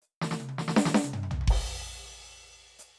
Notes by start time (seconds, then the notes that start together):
0.02 hi-hat pedal
0.22 snare
0.31 snare
0.40 high tom
0.49 high tom
0.58 snare
0.68 snare
0.76 snare
0.85 snare
0.94 snare
1.04 high tom
1.13 mid tom
1.23 high tom
1.31 floor tom
1.41 floor tom
1.44 kick, floor tom
1.50 crash
2.79 hi-hat pedal